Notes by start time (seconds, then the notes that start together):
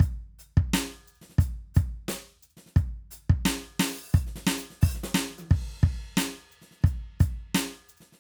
0.01 closed hi-hat, kick
0.39 closed hi-hat
0.58 kick
0.74 closed hi-hat, snare
1.08 closed hi-hat
1.16 closed hi-hat
1.22 snare
1.30 snare
1.39 closed hi-hat, kick, snare
1.75 closed hi-hat, kick
2.09 closed hi-hat, snare
2.30 hi-hat pedal
2.43 closed hi-hat
2.51 closed hi-hat
2.58 snare
2.67 snare
2.77 closed hi-hat, kick
3.12 closed hi-hat
3.31 kick
3.46 open hi-hat, snare
3.80 open hi-hat, snare
4.13 open hi-hat, kick
4.18 hi-hat pedal
4.27 snare
4.37 snare
4.48 snare
4.58 closed hi-hat
4.71 snare
4.82 open hi-hat, kick
4.92 snare, hi-hat pedal
5.04 snare
5.15 snare, hi-hat pedal
5.27 high tom
5.39 high tom
5.51 kick, crash
5.84 kick
6.18 open hi-hat, snare
6.53 closed hi-hat
6.62 snare, closed hi-hat
6.72 snare
6.82 kick, snare
6.86 closed hi-hat
7.20 closed hi-hat, kick
7.56 closed hi-hat, snare
7.69 hi-hat pedal
7.90 closed hi-hat
7.98 snare, closed hi-hat
8.13 snare